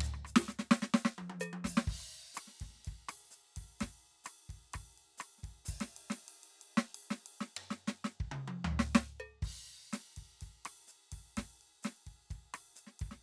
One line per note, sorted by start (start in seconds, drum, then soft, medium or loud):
0.01 hi-hat pedal loud
0.01 floor tom loud
0.14 cross-stick soft
0.25 kick soft
0.25 cross-stick medium
0.25 hi-hat pedal medium
0.36 snare loud
0.49 snare soft
0.49 hi-hat pedal medium
0.59 snare medium
0.71 snare loud
0.71 hi-hat pedal medium
0.83 snare medium
0.94 snare loud
0.94 hi-hat pedal medium
1.05 snare medium
1.19 kick soft
1.19 high tom medium
1.30 high tom medium
1.40 hi-hat pedal loud
1.40 percussion loud
1.53 high tom medium
1.65 kick soft
1.65 snare medium
1.65 hi-hat pedal loud
1.70 kick soft
1.77 snare loud
1.88 kick medium
1.88 snare soft
1.88 crash medium
1.99 kick soft
1.99 cross-stick soft
2.35 cross-stick medium
2.35 hi-hat pedal loud
2.35 ride medium
2.48 snare soft
2.60 kick soft
2.60 snare soft
2.60 ride soft
2.67 kick soft
2.67 snare soft
2.75 snare soft
2.79 snare soft
2.85 kick soft
2.85 hi-hat pedal soft
2.85 ride soft
2.93 kick soft
3.09 cross-stick medium
3.09 ride medium
3.31 hi-hat pedal medium
3.57 kick soft
3.57 ride medium
3.63 kick soft
3.80 kick soft
3.80 snare medium
3.80 hi-hat pedal soft
3.80 ride medium
3.88 kick soft
4.25 cross-stick medium
4.25 hi-hat pedal medium
4.25 ride medium
4.50 kick soft
4.50 ride soft
4.55 kick soft
4.73 kick soft
4.73 cross-stick medium
4.73 hi-hat pedal soft
4.73 ride medium
4.81 kick soft
4.98 ride soft
5.18 cross-stick medium
5.18 hi-hat pedal medium
5.18 ride medium
5.38 snare soft
5.44 kick soft
5.44 ride soft
5.49 kick soft
5.66 kick soft
5.66 hi-hat pedal loud
5.66 ride medium
5.75 kick soft
5.81 snare medium
5.81 ride medium
5.97 ride medium
6.10 snare medium
6.10 ride medium
6.29 ride medium
6.44 ride medium
6.62 ride medium
6.78 snare loud
6.95 ride medium
7.11 snare medium
7.26 ride medium
7.41 snare medium
7.57 floor tom loud
7.71 snare medium
7.88 snare medium
8.05 snare medium
8.20 kick soft
8.28 kick soft
8.32 mid tom medium
8.48 high tom medium
8.65 floor tom loud
8.80 snare medium
8.95 snare loud
9.20 percussion medium
9.42 kick soft
9.42 hi-hat pedal soft
9.42 crash medium
9.93 snare medium
9.93 hi-hat pedal medium
9.93 ride medium
10.17 kick soft
10.17 ride medium
10.23 kick soft
10.41 kick soft
10.41 hi-hat pedal soft
10.41 ride soft
10.48 kick soft
10.66 cross-stick medium
10.66 ride medium
10.88 hi-hat pedal medium
11.12 kick soft
11.12 ride medium
11.18 kick soft
11.37 kick soft
11.37 snare medium
11.37 hi-hat pedal soft
11.37 ride medium
11.43 kick soft
11.61 ride soft
11.83 snare medium
11.83 hi-hat pedal medium
11.83 ride medium
12.07 kick soft
12.07 ride soft
12.30 kick soft
12.30 hi-hat pedal soft
12.30 ride soft
12.54 cross-stick medium
12.54 ride medium
12.76 hi-hat pedal medium
12.76 ride soft
12.87 snare soft
13.00 kick soft
13.00 ride medium
13.08 kick soft
13.08 snare soft